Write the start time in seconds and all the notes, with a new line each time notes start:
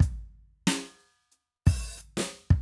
0.01 kick, closed hi-hat
0.68 snare, closed hi-hat
1.00 closed hi-hat
1.32 closed hi-hat
1.66 open hi-hat, kick
1.98 hi-hat pedal
2.18 snare
2.20 snare
2.51 kick